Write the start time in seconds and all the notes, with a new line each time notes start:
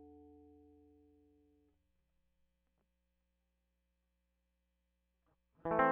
5.66 E3
5.72 A3
5.80 C4